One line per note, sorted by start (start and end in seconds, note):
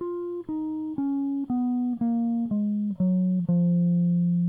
0.01 0.45 F4
0.49 0.97 D#4
0.99 1.48 C#4
1.50 1.99 B3
2.02 2.50 A#3
2.52 2.96 G#3
3.01 3.49 F#3
3.50 4.49 F3